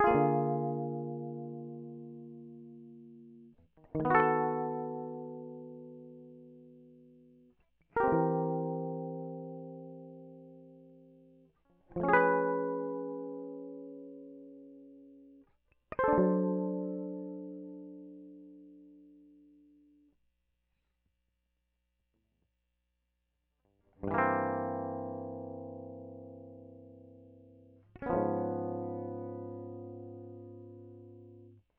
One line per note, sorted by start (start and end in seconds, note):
0.00 3.54 F4
0.00 2.17 G#4
0.07 3.55 A#3
0.14 0.19 A2
0.14 3.57 D3
3.96 7.50 D#3
4.05 7.53 B3
4.10 7.54 F#4
4.14 6.50 A4
7.96 11.52 G4
7.96 10.84 A#4
8.04 11.49 C4
8.09 8.17 A3
8.13 11.52 E3
11.97 14.93 F3
11.97 13.60 A3
12.03 15.45 C#4
12.08 15.53 G#4
12.13 15.19 B4
12.13 12.22 D5
15.99 18.63 C5
16.04 19.55 A4
16.08 20.13 D4
16.13 16.19 A3
16.18 19.50 F#3
24.05 28.16 G2
24.11 27.94 E3
24.11 27.79 A#3
24.18 27.82 C4
28.02 31.54 C#4
28.06 31.59 F3
28.06 31.59 B3
28.18 31.62 G#2